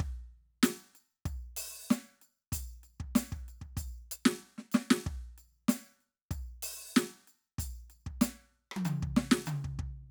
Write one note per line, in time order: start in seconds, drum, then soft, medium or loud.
0.01 kick medium
0.64 snare loud
0.64 percussion loud
0.96 percussion soft
1.27 kick medium
1.27 percussion medium
1.58 percussion loud
1.92 snare loud
1.92 percussion medium
2.23 percussion soft
2.53 kick medium
2.53 percussion loud
2.84 percussion soft
3.01 kick medium
3.16 snare loud
3.16 percussion loud
3.33 kick medium
3.49 percussion soft
3.63 kick soft
3.78 kick medium
3.78 percussion medium
4.12 percussion loud
4.12 percussion medium
4.26 snare loud
4.43 snare soft
4.59 snare soft
4.73 snare loud
4.73 percussion medium
4.92 snare loud
5.07 kick medium
5.39 percussion soft
5.69 snare loud
5.69 percussion loud
6.02 percussion soft
6.32 kick medium
6.32 percussion medium
6.64 percussion loud
6.97 snare loud
6.97 percussion medium
7.29 percussion soft
7.59 kick medium
7.59 percussion loud
7.91 percussion soft
8.07 kick medium
8.22 snare loud
8.22 percussion medium
8.22 percussion loud
8.73 high tom medium
8.77 high tom loud
8.86 mid tom loud
8.86 percussion medium
9.04 kick medium
9.18 snare loud
9.32 snare loud
9.47 mid tom loud
9.47 percussion medium
9.65 kick medium
9.80 kick medium